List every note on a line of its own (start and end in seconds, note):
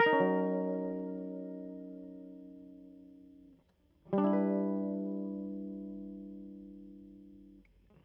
0.00 3.27 A#4
0.06 3.53 D#4
0.13 3.57 C#4
0.21 3.57 F#3
4.13 7.65 G3
4.18 7.64 D4
4.24 7.64 E4
4.33 7.23 B4
7.91 7.98 G#3